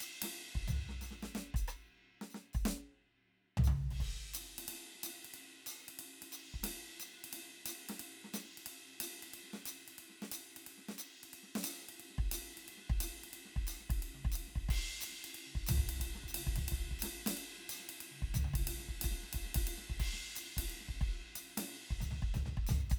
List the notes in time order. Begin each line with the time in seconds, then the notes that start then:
0.01 hi-hat pedal, ride
0.22 snare, ride
0.33 ride
0.55 kick
0.68 floor tom, hi-hat pedal
0.78 high tom
0.89 snare
1.02 snare, hi-hat pedal
1.11 snare
1.23 snare
1.35 snare
1.55 kick, percussion
1.68 cross-stick, hi-hat pedal
2.22 snare
2.30 hi-hat pedal
2.35 snare
2.54 kick, percussion
2.66 snare
3.58 floor tom
3.64 hi-hat pedal, high tom
3.69 closed hi-hat
3.91 kick, ride
4.00 kick, crash
4.34 hi-hat pedal, ride
4.59 ride
4.68 ride
4.95 snare
5.04 hi-hat pedal, ride
5.25 ride
5.34 ride
5.57 snare
5.67 hi-hat pedal, ride
5.89 ride
5.99 ride
6.22 snare, ride
6.32 hi-hat pedal, ride
6.54 kick
6.64 snare, ride
7.00 hi-hat pedal, ride
7.22 snare, ride
7.33 ride
7.66 hi-hat pedal, ride
7.89 snare, ride
8.00 ride
8.25 snare
8.34 snare, hi-hat pedal, ride
8.58 ride
8.67 ride
8.93 snare
9.01 hi-hat pedal, ride
9.23 ride
9.34 ride
9.44 snare
9.54 snare
9.66 hi-hat pedal, ride
9.88 ride
9.99 ride
10.10 snare
10.23 snare
10.32 hi-hat pedal, ride
10.57 ride
10.67 ride
10.78 snare
10.89 snare
10.99 hi-hat pedal, ride
11.24 ride
11.34 ride
11.43 snare
11.56 snare
11.64 hi-hat pedal, ride
11.89 ride
12.00 ride
12.11 snare
12.19 kick
12.32 hi-hat pedal, ride
12.58 ride
12.68 ride
12.78 snare
12.90 kick
13.01 hi-hat pedal, ride
13.24 ride
13.34 ride
13.46 snare
13.56 kick
13.67 hi-hat pedal, ride
13.81 snare
13.90 kick, ride
14.03 ride
14.15 high tom
14.25 kick
14.32 hi-hat pedal, ride
14.48 snare
14.56 kick
14.69 kick, ride
15.01 hi-hat pedal, ride
15.12 snare
15.25 ride
15.35 ride
15.47 high tom
15.55 kick
15.67 floor tom, hi-hat pedal, ride
15.78 kick
15.89 ride
16.00 kick, ride
16.15 snare
16.24 kick
16.29 hi-hat pedal
16.35 high tom, ride
16.47 kick
16.56 floor tom, ride
16.69 kick, ride
16.81 high tom
16.91 kick
17.00 hi-hat pedal, ride
17.04 snare
17.27 snare, ride
17.37 ride
17.58 snare
17.70 hi-hat pedal, ride
17.80 snare
17.90 ride
18.01 ride
18.12 high tom
18.22 kick
18.35 floor tom, hi-hat pedal
18.45 high tom
18.54 kick, ride
18.68 ride
18.79 snare
18.89 kick
19.02 kick, hi-hat pedal, ride
19.11 snare
19.23 snare
19.33 kick, ride
19.46 snare
19.55 kick, ride
19.67 ride
19.78 snare
19.90 kick
20.00 kick, ride
20.14 snare
20.36 hi-hat pedal, ride
20.57 kick, ride
20.70 ride
20.81 snare
20.89 kick
21.01 kick, ride
21.17 snare
21.36 hi-hat pedal, ride
21.58 snare, ride
21.68 ride
21.91 kick
22.01 snare, floor tom, hi-hat pedal
22.11 snare, floor tom
22.23 kick
22.35 snare, floor tom, hi-hat pedal
22.46 snare, floor tom
22.57 kick
22.67 snare, floor tom, hi-hat pedal
22.90 kick, percussion